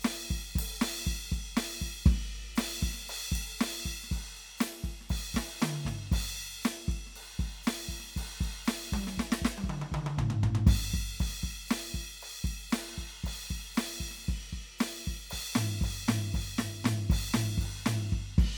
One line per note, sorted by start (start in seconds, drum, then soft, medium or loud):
0.01 snare loud
0.01 hi-hat pedal medium
0.05 crash loud
0.30 kick medium
0.30 crash soft
0.55 kick medium
0.55 crash loud
0.81 snare loud
0.81 crash loud
1.06 kick medium
1.06 crash soft
1.32 kick medium
1.32 crash soft
1.57 snare loud
1.57 crash loud
1.81 kick medium
1.81 crash soft
2.06 kick loud
2.06 crash medium
2.55 snare loud
2.55 hi-hat pedal loud
2.55 crash loud
2.81 kick medium
2.81 snare soft
2.86 snare soft
2.90 snare soft
2.94 snare soft
2.97 snare soft
3.03 snare soft
3.07 snare soft
3.07 crash loud
3.32 kick medium
3.32 crash medium
3.58 snare loud
3.58 hi-hat pedal medium
3.63 crash loud
3.85 kick medium
3.85 crash soft
4.03 snare soft
4.11 kick medium
4.11 crash medium
4.37 crash soft
4.58 snare loud
4.58 hi-hat pedal medium
4.58 crash loud
4.84 kick medium
4.84 crash soft
5.01 snare soft
5.05 snare soft
5.08 kick medium
5.08 snare soft
5.08 crash loud
5.10 snare soft
5.18 snare soft
5.34 kick medium
5.34 snare loud
5.34 crash medium
5.60 snare loud
5.60 hi-hat pedal medium
5.60 mid tom loud
5.85 kick soft
5.85 snare medium
5.85 floor tom medium
6.12 kick medium
6.12 crash loud
6.37 crash soft
6.62 snare loud
6.62 hi-hat pedal medium
6.62 crash medium
6.88 kick medium
6.88 crash soft
7.06 snare soft
7.10 snare soft
7.13 snare soft
7.15 snare soft
7.15 crash medium
7.39 kick medium
7.39 crash soft
7.63 hi-hat pedal medium
7.67 snare loud
7.67 crash loud
7.89 kick soft
7.89 crash soft
7.99 snare soft
8.03 snare soft
8.06 snare soft
8.09 snare soft
8.16 kick medium
8.16 snare soft
8.16 crash medium
8.41 kick medium
8.41 crash medium
8.65 snare loud
8.65 hi-hat pedal medium
8.65 crash loud
8.92 kick medium
8.92 high tom loud
9.07 snare medium
9.17 kick soft
9.17 snare loud
9.32 snare loud
9.42 kick medium
9.42 snare loud
9.58 high tom loud
9.64 kick medium
9.69 mid tom loud
9.81 mid tom loud
9.92 kick medium
9.92 mid tom loud
10.06 mid tom loud
10.18 kick medium
10.18 floor tom loud
10.30 floor tom loud
10.43 kick medium
10.43 floor tom loud
10.55 floor tom loud
10.67 kick loud
10.67 crash loud
10.94 kick medium
11.20 kick medium
11.20 crash loud
11.42 kick medium
11.42 crash soft
11.67 snare loud
11.67 hi-hat pedal medium
11.72 crash loud
11.94 kick medium
11.94 crash soft
12.11 snare soft
12.22 crash medium
12.44 kick medium
12.44 crash medium
12.69 snare loud
12.69 hi-hat pedal medium
12.74 crash medium
12.98 kick soft
12.98 crash soft
13.24 kick medium
13.24 crash loud
13.50 kick medium
13.50 crash soft
13.74 snare loud
13.74 hi-hat pedal medium
13.79 crash loud
14.00 kick soft
14.00 crash soft
14.11 snare soft
14.15 snare soft
14.18 snare soft
14.20 snare soft
14.24 snare soft
14.25 kick medium
14.25 snare soft
14.29 crash medium
14.53 kick soft
14.78 snare loud
14.78 hi-hat pedal medium
14.78 crash medium
15.07 kick medium
15.26 snare soft
15.30 kick soft
15.30 crash loud
15.55 snare loud
15.55 floor tom loud
15.81 kick medium
15.81 crash loud
16.08 snare loud
16.08 floor tom loud
16.34 kick medium
16.34 crash medium
16.58 snare loud
16.58 floor tom medium
16.84 snare loud
16.84 floor tom loud
17.10 kick medium
17.10 crash loud
17.34 snare loud
17.34 floor tom loud
17.58 kick medium
17.58 crash medium
17.86 snare loud
17.86 floor tom loud
18.12 kick medium
18.38 kick loud
18.38 crash loud